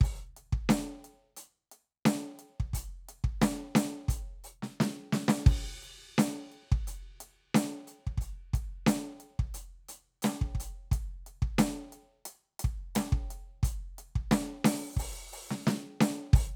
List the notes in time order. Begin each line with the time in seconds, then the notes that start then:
0.01 open hi-hat, kick
0.37 closed hi-hat
0.53 kick
0.69 closed hi-hat, snare
1.04 closed hi-hat
1.37 closed hi-hat
1.72 closed hi-hat
2.06 snare, closed hi-hat
2.39 closed hi-hat
2.60 kick
2.74 closed hi-hat, kick
3.09 closed hi-hat
3.24 kick
3.42 closed hi-hat, snare
3.75 closed hi-hat, snare
4.09 closed hi-hat, kick
4.44 open hi-hat
4.62 snare
4.80 snare
5.13 snare
5.28 snare
5.46 kick, crash
5.82 closed hi-hat
6.18 closed hi-hat, snare
6.52 closed hi-hat
6.72 kick, snare
6.87 closed hi-hat
7.21 closed hi-hat
7.55 closed hi-hat, snare
7.87 closed hi-hat
8.07 kick
8.18 open hi-hat, kick
8.54 kick, closed hi-hat
8.87 closed hi-hat, snare
9.20 closed hi-hat
9.39 kick
9.54 closed hi-hat
9.89 closed hi-hat
10.22 closed hi-hat, snare
10.41 kick
10.55 kick
10.60 closed hi-hat
10.92 kick, closed hi-hat
11.27 closed hi-hat
11.42 kick
11.59 snare, closed hi-hat
11.92 closed hi-hat
12.26 closed hi-hat
12.60 closed hi-hat
12.64 kick
12.95 snare, closed hi-hat
13.12 kick
13.31 closed hi-hat
13.63 closed hi-hat, kick
13.98 closed hi-hat
14.16 kick
14.31 snare, closed hi-hat
14.65 snare, open hi-hat
14.97 open hi-hat, kick
15.33 open hi-hat
15.51 snare
15.67 snare
16.01 snare
16.33 open hi-hat, kick